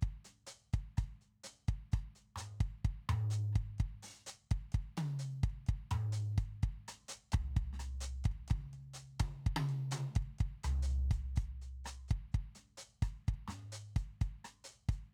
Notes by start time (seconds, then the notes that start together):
0.01 closed hi-hat, kick
0.25 closed hi-hat, snare
0.47 closed hi-hat, hi-hat pedal
0.73 closed hi-hat, kick
0.97 closed hi-hat, kick, cross-stick, snare
1.04 kick
1.21 closed hi-hat
1.44 snare, hi-hat pedal
1.68 closed hi-hat, kick
1.92 open hi-hat, kick, cross-stick, snare
2.15 closed hi-hat
2.36 cross-stick, hi-hat pedal, mid tom
2.41 cross-stick
2.60 kick, closed hi-hat
2.85 closed hi-hat, kick
3.09 closed hi-hat, mid tom
3.30 closed hi-hat, hi-hat pedal
3.53 kick, cross-stick, closed hi-hat
3.78 kick, closed hi-hat
4.03 open hi-hat, snare
4.26 hi-hat pedal
4.51 kick, closed hi-hat
4.72 kick, closed hi-hat
4.97 closed hi-hat, high tom
5.19 closed hi-hat, hi-hat pedal
5.43 kick, closed hi-hat
5.49 kick
5.66 kick, closed hi-hat
5.91 closed hi-hat, mid tom
6.12 closed hi-hat, hi-hat pedal
6.31 snare
6.38 closed hi-hat, kick
6.63 kick, closed hi-hat
6.88 closed hi-hat, cross-stick, snare
7.08 closed hi-hat, hi-hat pedal
7.32 kick, closed hi-hat, floor tom
7.56 kick, closed hi-hat
7.73 snare
7.79 closed hi-hat, cross-stick
8.01 closed hi-hat, hi-hat pedal
8.24 kick, closed hi-hat
8.31 kick
8.48 kick, closed hi-hat, high tom
8.73 closed hi-hat
8.94 closed hi-hat, hi-hat pedal
9.20 kick, closed hi-hat, high tom
9.46 kick
9.56 high tom
9.69 closed hi-hat
9.91 hi-hat pedal, open hi-hat, high tom
10.15 kick, closed hi-hat
10.22 kick
10.39 kick, closed hi-hat
10.64 closed hi-hat, floor tom
10.82 hi-hat pedal
10.88 closed hi-hat
11.11 closed hi-hat, kick
11.36 open hi-hat, kick
11.62 closed hi-hat
11.84 open hi-hat, cross-stick, snare, hi-hat pedal
12.08 closed hi-hat, kick
12.32 open hi-hat, kick
12.55 closed hi-hat, snare
12.77 closed hi-hat, hi-hat pedal
13.02 closed hi-hat, kick, cross-stick, snare
13.27 closed hi-hat, kick
13.34 kick
13.48 closed hi-hat, snare, mid tom
13.72 closed hi-hat, hi-hat pedal
13.96 closed hi-hat, kick
14.21 closed hi-hat, kick
14.44 closed hi-hat, cross-stick, snare
14.64 hi-hat pedal
14.70 closed hi-hat
14.89 closed hi-hat, kick